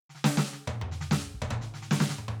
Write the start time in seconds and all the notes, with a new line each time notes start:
0.10 snare
0.15 snare
0.24 snare
0.37 snare
0.53 snare
0.68 high tom
0.82 mid tom
0.92 snare
1.01 snare
1.11 snare
1.25 kick
1.34 kick
1.42 high tom
1.51 high tom
1.61 snare
1.74 snare
1.82 snare
1.91 snare
2.00 snare
2.10 snare
2.18 high tom
2.28 high tom